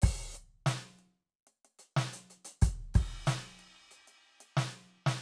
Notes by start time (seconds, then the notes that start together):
0.02 open hi-hat, kick
0.33 hi-hat pedal
0.66 closed hi-hat, snare
0.99 closed hi-hat
1.30 closed hi-hat
1.47 closed hi-hat
1.65 closed hi-hat
1.79 closed hi-hat
1.96 snare
2.13 closed hi-hat
2.30 closed hi-hat
2.45 closed hi-hat
2.62 open hi-hat, kick
2.94 kick, hi-hat pedal, crash
3.26 closed hi-hat, snare
3.59 closed hi-hat
3.91 closed hi-hat
4.07 closed hi-hat
4.25 closed hi-hat
4.40 closed hi-hat
4.57 snare
4.71 closed hi-hat
5.06 snare